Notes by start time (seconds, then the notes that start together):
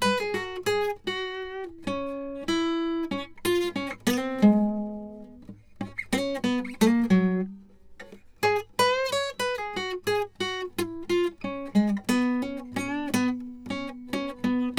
0.03 B4
0.20 G#4
0.35 F#4
0.68 G#4
1.08 F#4
1.66 E4
1.88 C#4
2.49 E4
3.12 C#4
3.46 F4
3.77 C#4
4.08 B3
4.28 C4
4.43 G#3
5.82 C#4
6.14 C#4
6.45 B3
6.82 A#3
7.11 F#3
8.44 G#4
8.80 B4 C5
9.14 C#5
9.41 B4
9.56 G#4
9.78 F#4
10.08 G#4
10.41 F#4
10.79 E4
11.11 F4
11.45 C#4
11.76 G#3
12.10 B3
12.44 C#4
12.77 C#4
13.15 B3
13.71 C#4
14.14 C#4
14.45 B3